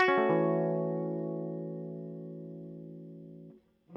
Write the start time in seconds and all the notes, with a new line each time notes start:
0.00 F#4
0.09 C#4
0.19 A3
0.31 E3